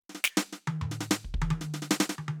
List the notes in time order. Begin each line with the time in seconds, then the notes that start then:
0.09 snare
0.15 snare
0.24 snare
0.37 snare
0.53 snare
0.67 high tom
0.81 mid tom
0.91 snare
1.01 snare
1.11 snare
1.25 kick
1.34 kick
1.42 high tom
1.50 high tom
1.61 snare
1.74 snare
1.82 snare
1.91 snare
2.00 snare
2.09 snare
2.18 high tom
2.28 high tom